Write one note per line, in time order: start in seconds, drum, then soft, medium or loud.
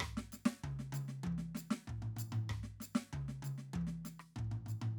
0.01 kick soft
0.01 high tom loud
0.09 kick soft
0.18 snare medium
0.33 snare soft
0.33 percussion medium
0.46 snare medium
0.64 kick soft
0.64 mid tom medium
0.72 kick soft
0.80 snare soft
0.93 mid tom medium
0.93 percussion medium
1.09 snare soft
1.24 kick soft
1.24 high tom loud
1.33 kick soft
1.39 snare soft
1.55 snare soft
1.55 percussion medium
1.71 snare medium
1.88 kick soft
1.88 floor tom medium
2.03 floor tom medium
2.17 floor tom medium
2.17 percussion medium
2.33 floor tom medium
2.50 kick soft
2.50 high tom medium
2.57 kick soft
2.64 snare soft
2.81 snare soft
2.81 percussion medium
2.96 snare medium
3.14 kick soft
3.14 mid tom medium
3.29 snare soft
3.43 mid tom medium
3.43 percussion soft
3.59 snare soft
3.74 kick soft
3.74 high tom loud
3.82 kick soft
3.88 snare soft
4.06 snare soft
4.06 percussion medium
4.20 cross-stick soft
4.37 kick soft
4.37 floor tom medium
4.45 kick soft
4.52 floor tom medium
4.67 floor tom medium
4.67 percussion soft
4.82 floor tom medium